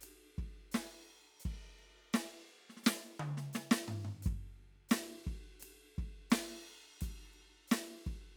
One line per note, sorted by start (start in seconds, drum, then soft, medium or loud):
0.01 hi-hat pedal medium
0.01 ride medium
0.38 kick soft
0.38 ride soft
0.72 snare medium
0.72 hi-hat pedal medium
0.72 crash soft
1.08 ride soft
1.40 hi-hat pedal medium
1.45 kick soft
1.45 crash soft
1.79 ride soft
2.13 snare loud
2.13 hi-hat pedal medium
2.13 ride soft
2.49 ride soft
2.69 snare soft
2.77 snare soft
2.83 snare soft
2.83 hi-hat pedal medium
2.86 snare loud
3.19 mid tom medium
3.37 snare soft
3.53 snare medium
3.53 hi-hat pedal medium
3.71 snare loud
3.88 floor tom medium
4.05 floor tom medium
4.23 kick medium
4.23 hi-hat pedal medium
4.23 ride soft
4.89 snare loud
4.89 hi-hat pedal medium
4.89 ride medium
5.27 kick soft
5.27 ride soft
5.60 hi-hat pedal medium
5.60 ride medium
5.96 kick soft
5.96 ride soft
6.30 snare loud
6.30 hi-hat pedal medium
6.30 crash medium
7.01 kick soft
7.01 hi-hat pedal medium
7.01 ride medium
7.33 ride soft
7.68 snare loud
7.68 hi-hat pedal soft
7.72 ride medium
8.06 kick soft
8.06 ride soft